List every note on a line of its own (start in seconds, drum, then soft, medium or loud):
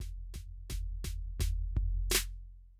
0.00 kick soft
0.00 snare soft
0.00 floor tom soft
0.34 kick soft
0.34 snare soft
0.34 floor tom soft
0.70 kick soft
0.70 snare medium
0.70 floor tom medium
1.04 kick soft
1.04 snare medium
1.04 floor tom medium
1.40 kick medium
1.40 snare medium
1.40 floor tom medium
1.76 kick medium
1.76 floor tom medium
2.10 snare loud
2.10 hi-hat pedal loud
2.15 snare loud